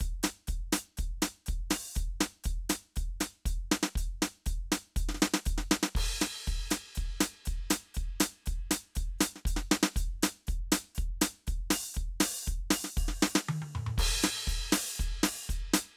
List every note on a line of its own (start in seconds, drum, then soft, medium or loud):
0.00 closed hi-hat soft
0.00 kick medium
0.23 closed hi-hat medium
0.23 snare loud
0.47 closed hi-hat soft
0.47 kick medium
0.72 open hi-hat loud
0.72 snare loud
0.72 hi-hat pedal soft
0.97 closed hi-hat medium
0.97 kick medium
1.22 closed hi-hat medium
1.22 snare loud
1.46 closed hi-hat medium
1.46 kick medium
1.70 open hi-hat medium
1.70 snare loud
1.94 closed hi-hat medium
1.94 kick medium
1.94 hi-hat pedal medium
2.20 closed hi-hat medium
2.20 snare loud
2.44 closed hi-hat medium
2.44 kick medium
2.69 closed hi-hat medium
2.69 snare loud
2.96 closed hi-hat soft
2.96 kick medium
3.20 closed hi-hat medium
3.20 snare medium
3.45 closed hi-hat medium
3.45 kick medium
3.71 snare loud
3.83 snare loud
3.95 closed hi-hat medium
3.95 kick medium
4.22 closed hi-hat medium
4.22 snare loud
4.46 closed hi-hat medium
4.46 kick medium
4.72 closed hi-hat medium
4.72 snare loud
4.96 closed hi-hat medium
4.96 kick medium
5.09 snare medium
5.14 snare soft
5.19 snare loud
5.19 hi-hat pedal soft
5.33 snare loud
5.45 closed hi-hat medium
5.45 kick medium
5.58 snare medium
5.71 snare loud
5.83 snare loud
5.95 kick medium
5.95 crash medium
6.21 closed hi-hat medium
6.21 snare loud
6.47 closed hi-hat soft
6.47 kick medium
6.70 closed hi-hat medium
6.70 snare loud
6.95 closed hi-hat soft
6.95 kick medium
7.20 closed hi-hat medium
7.20 snare loud
7.45 closed hi-hat soft
7.45 kick medium
7.70 closed hi-hat loud
7.70 snare loud
7.94 closed hi-hat soft
7.94 kick medium
8.20 closed hi-hat loud
8.20 snare loud
8.46 closed hi-hat soft
8.46 kick medium
8.71 closed hi-hat loud
8.71 snare loud
8.95 closed hi-hat medium
8.95 kick medium
9.18 closed hi-hat loud
9.18 snare loud
9.18 hi-hat pedal soft
9.36 snare soft
9.45 closed hi-hat medium
9.45 kick medium
9.56 snare medium
9.71 snare loud
9.83 snare loud
9.94 closed hi-hat medium
9.94 kick medium
9.94 hi-hat pedal soft
10.22 closed hi-hat medium
10.22 snare loud
10.47 open hi-hat soft
10.47 kick medium
10.72 closed hi-hat loud
10.72 snare loud
10.95 open hi-hat medium
10.95 kick medium
11.21 closed hi-hat loud
11.21 snare loud
11.47 closed hi-hat soft
11.47 kick medium
11.70 open hi-hat loud
11.70 snare loud
11.92 closed hi-hat medium
11.92 hi-hat pedal soft
11.97 kick medium
12.20 open hi-hat loud
12.20 snare loud
12.46 closed hi-hat soft
12.46 kick medium
12.70 open hi-hat loud
12.70 snare loud
12.84 snare medium
12.97 open hi-hat medium
12.97 kick medium
13.08 snare medium
13.22 snare loud
13.26 hi-hat pedal medium
13.35 snare loud
13.48 high tom loud
13.62 high tom medium
13.75 mid tom loud
13.86 mid tom medium
13.98 kick medium
13.98 crash medium
14.22 closed hi-hat medium
14.22 snare loud
14.47 closed hi-hat soft
14.47 kick medium
14.72 open hi-hat loud
14.72 snare loud
14.97 closed hi-hat soft
14.97 kick medium
14.97 hi-hat pedal soft
15.23 open hi-hat loud
15.23 snare loud
15.49 closed hi-hat medium
15.49 kick medium
15.73 closed hi-hat loud
15.73 snare loud